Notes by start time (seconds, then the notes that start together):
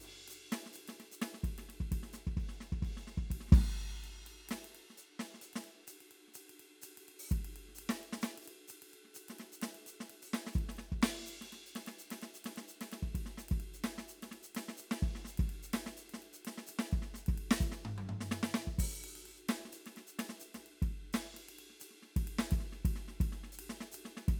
0.01 hi-hat pedal, ride
0.28 hi-hat pedal, ride
0.50 snare, hi-hat pedal, ride
0.66 snare
0.73 hi-hat pedal, ride
0.88 snare, ride
1.00 snare, ride
1.12 hi-hat pedal
1.22 snare, ride
1.34 snare
1.44 kick, ride
1.58 snare, ride
1.69 snare, ride
1.81 kick
1.92 kick, ride
2.03 snare
2.13 snare, hi-hat pedal
2.27 kick
2.37 kick, ride
2.49 snare
2.61 snare
2.73 kick
2.83 kick, ride
2.97 snare
3.07 snare
3.18 kick
3.31 kick, ride
3.41 snare
3.48 snare
3.53 kick, snare, crash
4.04 ride
4.27 ride
4.49 snare, ride
4.65 ride
4.75 ride
4.90 snare
4.98 hi-hat pedal, ride
5.20 snare, ride
5.35 snare
5.42 hi-hat pedal, ride
5.54 snare, ride
5.64 ride
5.88 hi-hat pedal, ride
6.01 ride
6.11 ride
6.28 snare
6.34 hi-hat pedal, ride
6.50 ride
6.60 ride
6.82 hi-hat pedal, ride
6.98 ride
7.03 hi-hat pedal
7.09 ride
7.19 open hi-hat
7.29 kick, hi-hat pedal, ride
7.45 ride
7.50 hi-hat pedal
7.56 ride
7.69 snare
7.75 hi-hat pedal, ride
7.89 snare, ride
7.97 hi-hat pedal
8.04 ride
8.13 snare
8.22 snare, hi-hat pedal, ride
8.38 ride
8.43 hi-hat pedal
8.68 snare, hi-hat pedal, ride
8.83 ride
8.89 hi-hat pedal
8.94 ride
9.05 snare
9.15 hi-hat pedal, ride
9.29 snare, ride
9.39 snare, ride
9.52 hi-hat pedal
9.62 snare, ride
9.75 ride
9.87 hi-hat pedal, ride
10.01 snare
10.10 ride
10.22 hi-hat pedal, ride
10.34 snare, ride
10.47 snare
10.53 kick, hi-hat pedal
10.59 ride
10.69 snare, ride
10.77 snare, ride
10.92 kick
11.02 snare, ride
11.26 hi-hat pedal, ride
11.41 snare, ride
11.53 snare
11.66 hi-hat pedal
11.76 snare, ride
11.87 snare, ride
11.99 hi-hat pedal
12.11 snare, ride
12.22 snare, ride
12.34 hi-hat pedal
12.45 snare, ride
12.56 snare, ride
12.68 hi-hat pedal
12.81 snare, ride
12.92 snare, ride
13.03 kick
13.15 kick, ride
13.26 snare
13.38 snare, hi-hat pedal
13.49 kick, ride
13.60 ride
13.74 hi-hat pedal
13.84 snare, ride
13.98 snare
14.08 hi-hat pedal, ride
14.23 snare, ride
14.32 snare, ride
14.43 hi-hat pedal
14.55 snare, ride
14.69 snare
14.77 hi-hat pedal, ride
14.92 snare
15.03 kick, ride
15.15 snare
15.25 snare, hi-hat pedal
15.38 kick, ride
15.50 ride
15.63 hi-hat pedal
15.74 snare, ride
15.87 snare
15.97 hi-hat pedal, ride
16.10 ride
16.14 snare
16.22 ride
16.33 hi-hat pedal
16.45 snare, ride
16.58 snare
16.67 hi-hat pedal, ride
16.79 snare
16.92 kick, ride
17.02 snare
17.14 snare, hi-hat pedal
17.27 kick, ride
17.38 ride
17.51 snare
17.60 kick, hi-hat pedal, ride
17.72 snare
17.85 floor tom
17.98 high tom
18.09 floor tom
18.21 snare
18.32 snare
18.43 snare
18.54 snare
18.68 kick
18.79 open hi-hat, kick, ride
19.04 ride
19.16 ride
19.26 ride
19.38 hi-hat pedal
19.49 snare, ride
19.65 snare
19.72 hi-hat pedal, ride
19.86 snare, ride
19.97 snare, ride
20.07 hi-hat pedal
20.19 snare, ride
20.30 snare
20.40 hi-hat pedal, ride
20.55 kick, snare, ride
20.67 ride
20.82 kick, ride
21.13 snare, hi-hat pedal, ride
21.34 snare, ride
21.49 ride
21.54 hi-hat pedal
21.59 ride
21.70 snare
21.80 hi-hat pedal, ride
21.91 snare
22.03 snare
22.17 kick, ride
22.28 ride
22.39 snare
22.50 kick, hi-hat pedal, ride
22.60 snare
22.73 snare
22.85 kick, ride
22.96 snare
23.08 snare
23.21 kick, ride
23.32 snare
23.44 snare
23.52 hi-hat pedal
23.59 ride
23.70 snare
23.81 snare
23.92 hi-hat pedal, ride
24.05 snare
24.17 snare
24.28 kick, ride